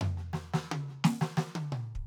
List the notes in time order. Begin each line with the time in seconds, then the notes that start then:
0.02 floor tom
0.17 snare
0.33 snare
0.54 snare
0.71 high tom
0.88 snare
1.04 snare
1.21 snare
1.37 snare
1.55 high tom
1.72 mid tom
1.95 kick